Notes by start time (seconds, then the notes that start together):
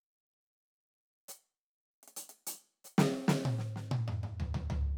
1.28 hi-hat pedal
2.03 closed hi-hat
2.08 closed hi-hat
2.16 closed hi-hat
2.29 closed hi-hat
2.47 open hi-hat
2.84 hi-hat pedal
2.98 snare
3.28 snare
3.45 high tom
3.58 snare
3.76 snare
3.91 high tom
4.08 mid tom
4.23 mid tom
4.40 floor tom
4.54 floor tom
4.70 floor tom